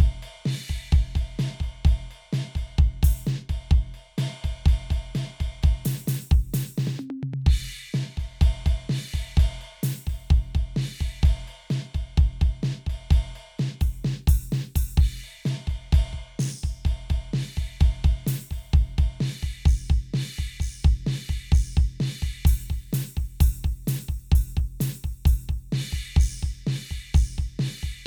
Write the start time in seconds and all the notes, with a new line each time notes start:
0.01 kick, ride
0.24 ride
0.47 snare, crash
0.71 kick, ride
0.94 kick, ride
1.17 kick, ride
1.41 snare, ride
1.62 kick, ride
1.87 kick, ride
2.12 ride
2.35 snare, ride
2.57 kick, ride
2.80 kick, ride
3.05 open hi-hat, kick, ride
3.28 snare, hi-hat pedal
3.51 kick, ride
3.73 kick, ride
3.96 ride
4.20 snare, ride
4.46 kick, ride
4.67 kick, ride
4.92 kick, ride
5.17 snare, ride
5.42 kick, ride
5.65 kick, ride
5.87 open hi-hat, snare
6.06 open hi-hat, kick, snare
6.33 kick
6.56 open hi-hat, snare
6.80 snare
6.89 snare
7.01 high tom
7.12 high tom
7.25 floor tom
7.35 floor tom
7.43 kick
7.48 kick, crash
7.96 snare, ride
8.19 kick, ride
8.43 kick, ride
8.68 kick, ride
8.91 snare, crash
9.15 kick, ride
9.39 kick, ride
9.63 ride
9.85 open hi-hat, snare
10.09 kick, ride
10.32 kick, ride
10.57 kick, ride
10.78 snare, crash
11.02 kick, ride
11.25 kick, ride
11.49 ride
11.71 snare, hi-hat pedal, ride
11.96 kick, ride
12.19 kick, ride
12.43 kick, ride
12.65 snare, ride
12.88 kick, ride
13.12 kick, ride
13.37 ride
13.60 snare, ride
13.83 open hi-hat, kick
14.06 snare
14.29 open hi-hat, kick
14.54 snare
14.77 open hi-hat, kick
14.99 kick, crash
15.26 ride
15.44 snare, hi-hat pedal
15.48 ride
15.69 kick, ride
15.94 kick, ride
16.15 kick
16.41 snare, crash
16.47 snare
16.65 kick, ride
16.87 kick, ride
17.08 snare, ride
17.12 kick
17.35 snare, crash
17.58 kick, ride
17.82 kick, ride
18.06 kick, ride
18.29 open hi-hat, snare
18.53 kick, ride
18.75 kick, ride
19.00 kick, ride
19.22 snare, crash
19.44 kick
19.67 kick, crash
19.92 kick
20.16 snare, crash
20.40 kick
20.62 kick, crash
20.86 kick
21.08 snare, crash
21.31 kick
21.54 kick, crash
21.79 kick
22.02 snare, crash
22.24 kick
22.41 kick
22.47 open hi-hat, kick
22.72 kick
22.95 open hi-hat, snare
23.19 kick
23.42 open hi-hat, kick
23.66 kick
23.89 open hi-hat, snare
24.10 kick
24.33 open hi-hat, kick
24.59 kick
24.82 open hi-hat, snare
25.06 kick
25.27 open hi-hat, kick
25.51 kick
25.74 snare, crash
25.94 kick
26.18 kick, crash
26.44 kick
26.69 snare, crash
26.92 kick
27.16 kick, crash
27.40 kick
27.61 snare, crash
27.69 snare
27.85 kick